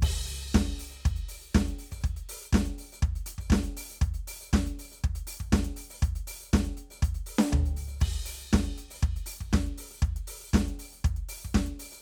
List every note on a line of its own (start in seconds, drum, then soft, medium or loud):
0.01 kick loud
0.01 hi-hat pedal soft
0.01 crash loud
0.27 open hi-hat medium
0.51 kick loud
0.51 snare loud
0.51 hi-hat pedal soft
0.72 closed hi-hat soft
0.78 open hi-hat loud
0.78 kick soft
0.90 open hi-hat medium
1.00 hi-hat pedal soft
1.05 closed hi-hat medium
1.05 kick loud
1.16 closed hi-hat soft
1.28 open hi-hat loud
1.40 open hi-hat medium
1.52 kick loud
1.52 snare loud
1.52 hi-hat pedal soft
1.67 closed hi-hat soft
1.78 open hi-hat medium
1.91 open hi-hat medium
1.91 kick medium
2.00 kick loud
2.00 hi-hat pedal soft
2.05 closed hi-hat medium
2.16 closed hi-hat medium
2.29 open hi-hat loud
2.41 open hi-hat medium
2.41 hi-hat pedal soft
2.52 kick loud
2.52 snare loud
2.65 closed hi-hat soft
2.78 open hi-hat medium
2.92 open hi-hat medium
2.96 hi-hat pedal soft
3.02 kick loud
3.02 closed hi-hat soft
3.15 closed hi-hat soft
3.26 open hi-hat loud
3.38 open hi-hat medium
3.38 kick medium
3.49 kick loud
3.49 snare loud
3.49 hi-hat pedal soft
3.63 closed hi-hat medium
3.77 open hi-hat loud
3.89 open hi-hat medium
3.96 hi-hat pedal soft
4.01 closed hi-hat medium
4.01 kick loud
4.14 closed hi-hat soft
4.27 open hi-hat loud
4.40 open hi-hat medium
4.48 hi-hat pedal soft
4.53 kick loud
4.53 snare loud
4.66 closed hi-hat medium
4.79 open hi-hat loud
4.91 open hi-hat medium
4.98 hi-hat pedal soft
5.04 kick loud
5.04 closed hi-hat medium
5.15 closed hi-hat medium
5.27 open hi-hat loud
5.40 kick medium
5.40 open hi-hat soft
5.52 kick loud
5.52 snare loud
5.52 hi-hat pedal soft
5.64 closed hi-hat medium
5.76 open hi-hat loud
5.90 open hi-hat loud
5.98 hi-hat pedal soft
6.02 closed hi-hat medium
6.02 kick loud
6.15 closed hi-hat medium
6.27 open hi-hat loud
6.40 open hi-hat medium
6.49 hi-hat pedal soft
6.53 kick loud
6.53 snare loud
6.65 closed hi-hat medium
6.77 closed hi-hat medium
6.90 open hi-hat medium
6.98 hi-hat pedal soft
7.02 closed hi-hat medium
7.02 kick loud
7.14 closed hi-hat soft
7.26 open hi-hat loud
7.38 snare loud
7.48 hi-hat pedal soft
7.52 kick loud
7.52 floor tom loud
7.65 closed hi-hat medium
7.76 open hi-hat medium
7.87 open hi-hat medium
7.98 kick loud
7.98 hi-hat pedal soft
7.98 crash loud
8.12 closed hi-hat soft
8.25 open hi-hat loud
8.40 open hi-hat soft
8.48 hi-hat pedal soft
8.53 kick loud
8.53 snare loud
8.65 closed hi-hat soft
8.78 open hi-hat medium
8.90 open hi-hat loud
8.98 hi-hat pedal soft
9.03 kick loud
9.03 closed hi-hat soft
9.16 closed hi-hat medium
9.26 open hi-hat loud
9.40 kick medium
9.40 open hi-hat soft
9.50 kick loud
9.50 snare loud
9.50 hi-hat pedal soft
9.66 closed hi-hat soft
9.78 open hi-hat loud
9.91 open hi-hat medium
9.99 kick loud
9.99 hi-hat pedal soft
10.04 closed hi-hat soft
10.16 closed hi-hat medium
10.27 open hi-hat loud
10.41 open hi-hat medium
10.49 kick loud
10.49 hi-hat pedal soft
10.54 snare loud
10.68 closed hi-hat medium
10.79 open hi-hat loud
10.93 open hi-hat medium
11.00 hi-hat pedal soft
11.04 kick loud
11.04 closed hi-hat medium
11.16 closed hi-hat medium
11.29 open hi-hat loud
11.39 open hi-hat medium
11.44 kick medium
11.54 kick loud
11.54 snare loud
11.54 hi-hat pedal soft
11.66 closed hi-hat medium
11.79 open hi-hat loud
11.91 open hi-hat medium